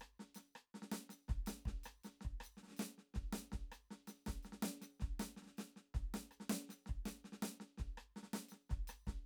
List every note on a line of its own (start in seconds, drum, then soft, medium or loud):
0.01 cross-stick medium
0.20 snare soft
0.35 snare soft
0.35 hi-hat pedal soft
0.55 cross-stick medium
0.74 snare soft
0.82 snare soft
0.92 snare medium
1.09 snare soft
1.09 hi-hat pedal soft
1.28 kick soft
1.28 snare soft
1.46 snare medium
1.46 hi-hat pedal soft
1.65 kick soft
1.65 snare soft
1.84 cross-stick medium
1.84 hi-hat pedal soft
2.04 snare soft
2.04 hi-hat pedal soft
2.21 kick soft
2.21 snare soft
2.40 cross-stick medium
2.40 hi-hat pedal soft
2.57 snare soft
2.63 snare soft
2.67 snare soft
2.70 snare soft
2.77 snare medium
2.77 hi-hat pedal soft
2.98 snare soft
3.14 kick soft
3.14 snare soft
3.33 snare medium
3.37 hi-hat pedal soft
3.52 kick soft
3.52 snare soft
3.72 cross-stick medium
3.72 hi-hat pedal soft
3.91 snare soft
4.07 snare soft
4.07 hi-hat pedal soft
4.26 kick soft
4.26 snare medium
4.43 snare soft
4.43 hi-hat pedal soft
4.52 snare soft
4.62 snare medium
4.81 snare soft
4.81 hi-hat pedal soft
5.00 snare soft
5.02 kick soft
5.02 snare soft
5.20 snare medium
5.20 hi-hat pedal soft
5.37 snare soft
5.42 snare soft
5.46 snare soft
5.57 snare medium
5.57 hi-hat pedal soft
5.76 snare soft
5.94 kick soft
5.94 snare soft
6.14 snare medium
6.31 cross-stick soft
6.31 hi-hat pedal soft
6.40 snare soft
6.50 snare medium
6.69 snare soft
6.69 hi-hat pedal soft
6.86 kick soft
6.86 snare soft
7.06 snare medium
7.06 hi-hat pedal soft
7.24 snare soft
7.32 snare soft
7.43 hi-hat pedal soft
7.60 snare soft
7.78 kick soft
7.78 snare soft
7.97 cross-stick medium
8.16 snare soft
8.23 snare soft
8.33 snare medium
8.49 snare soft
8.49 hi-hat pedal soft
8.70 kick soft
8.70 snare soft
8.87 cross-stick medium
8.87 hi-hat pedal soft
9.07 kick soft
9.07 snare soft